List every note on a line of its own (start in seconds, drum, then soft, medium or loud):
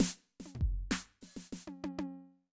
0.00 snare loud
0.40 snare soft
0.46 high tom soft
0.55 floor tom medium
0.61 kick medium
0.91 snare medium
1.21 snare soft
1.21 hi-hat pedal medium
1.36 snare soft
1.52 snare soft
1.67 high tom medium
1.84 high tom medium
1.99 closed hi-hat soft
1.99 high tom loud